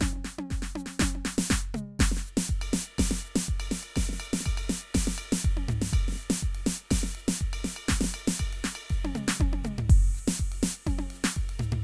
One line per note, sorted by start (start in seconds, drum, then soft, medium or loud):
0.01 kick medium
0.01 snare medium
0.01 hi-hat pedal medium
0.01 high tom loud
0.13 high tom soft
0.16 high tom soft
0.25 snare medium
0.25 hi-hat pedal medium
0.39 high tom loud
0.51 kick medium
0.51 snare soft
0.51 hi-hat pedal medium
0.62 snare medium
0.76 hi-hat pedal medium
0.76 high tom loud
0.86 snare medium
1.00 kick medium
1.00 snare loud
1.00 hi-hat pedal medium
1.00 high tom loud
1.15 high tom medium
1.25 snare medium
1.25 hi-hat pedal medium
1.38 snare loud
1.50 kick medium
1.50 snare loud
1.50 hi-hat pedal medium
1.74 hi-hat pedal medium
1.74 mid tom loud
2.00 kick medium
2.00 snare loud
2.00 hi-hat pedal medium
2.00 ride loud
2.12 snare medium
2.17 snare soft
2.25 hi-hat pedal medium
2.37 snare loud
2.49 kick medium
2.49 hi-hat pedal medium
2.49 ride loud
2.62 ride bell loud
2.73 snare loud
2.73 hi-hat pedal medium
2.86 ride medium
2.99 kick medium
2.99 snare loud
2.99 hi-hat pedal medium
2.99 ride bell loud
3.11 snare loud
3.23 hi-hat pedal medium
3.23 ride loud
3.36 snare loud
3.47 kick medium
3.47 hi-hat pedal medium
3.47 ride loud
3.60 ride bell loud
3.72 snare loud
3.72 hi-hat pedal medium
3.83 ride bell loud
3.96 kick medium
3.96 snare medium
3.96 hi-hat pedal medium
3.96 ride bell loud
4.09 snare medium
4.13 snare soft
4.20 hi-hat pedal medium
4.20 ride bell loud
4.33 snare loud
4.41 snare soft
4.46 kick medium
4.46 hi-hat pedal medium
4.46 ride bell loud
4.58 ride bell loud
4.70 snare loud
4.70 hi-hat pedal medium
4.82 ride medium
4.95 kick medium
4.95 snare loud
4.95 hi-hat pedal medium
4.95 ride bell loud
5.07 snare medium
5.18 hi-hat pedal medium
5.18 ride bell loud
5.32 snare loud
5.44 kick medium
5.44 hi-hat pedal medium
5.44 ride loud
5.57 high tom medium
5.69 floor tom loud
5.69 hi-hat pedal loud
5.82 snare loud
5.93 kick medium
5.93 hi-hat pedal medium
5.93 ride bell loud
6.08 snare medium
6.13 snare soft
6.16 snare soft
6.16 hi-hat pedal medium
6.16 ride medium
6.30 snare loud
6.42 kick medium
6.42 hi-hat pedal medium
6.42 ride medium
6.55 ride loud
6.67 snare loud
6.67 hi-hat pedal medium
6.79 ride medium
6.91 kick medium
6.91 snare loud
6.91 hi-hat pedal medium
6.91 ride bell loud
7.03 snare medium
7.15 hi-hat pedal medium
7.15 ride loud
7.28 snare loud
7.40 kick medium
7.40 hi-hat pedal soft
7.40 ride loud
7.53 ride bell loud
7.65 snare medium
7.65 hi-hat pedal medium
7.77 ride bell loud
7.89 kick medium
7.89 snare loud
7.89 hi-hat pedal medium
7.89 ride loud
8.01 snare loud
8.04 snare medium
8.14 hi-hat pedal medium
8.14 ride bell loud
8.28 snare loud
8.40 kick medium
8.40 hi-hat pedal medium
8.40 ride bell loud
8.53 ride loud
8.64 snare loud
8.64 hi-hat pedal medium
8.76 ride bell loud
8.90 kick medium
8.90 hi-hat pedal medium
8.90 ride loud
9.05 high tom loud
9.12 kick soft
9.12 hi-hat pedal medium
9.12 mid tom loud
9.28 snare loud
9.39 kick medium
9.39 hi-hat pedal soft
9.39 high tom loud
9.53 high tom loud
9.62 kick soft
9.62 hi-hat pedal medium
9.62 mid tom loud
9.78 floor tom loud
9.89 kick loud
9.89 hi-hat pedal medium
9.89 crash loud
10.15 hi-hat pedal medium
10.15 ride medium
10.28 snare loud
10.39 kick medium
10.39 hi-hat pedal medium
10.39 ride loud
10.52 ride loud
10.63 snare loud
10.63 hi-hat pedal medium
10.75 ride medium
10.87 kick medium
10.87 hi-hat pedal medium
10.87 high tom loud
10.87 ride loud
10.99 high tom loud
11.11 hi-hat pedal medium
11.11 ride loud
11.24 snare loud
11.36 kick medium
11.36 hi-hat pedal medium
11.36 ride loud
11.49 ride loud
11.60 floor tom loud
11.60 hi-hat pedal medium
11.72 floor tom loud